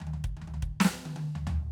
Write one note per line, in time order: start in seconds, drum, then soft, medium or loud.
0.00 floor tom medium
0.00 high tom medium
0.07 high tom medium
0.13 floor tom medium
0.24 kick medium
0.37 high tom medium
0.42 floor tom medium
0.48 high tom medium
0.54 floor tom medium
0.62 kick medium
0.80 snare loud
0.85 snare loud
1.05 high tom loud
1.16 high tom loud
1.35 floor tom medium
1.47 floor tom loud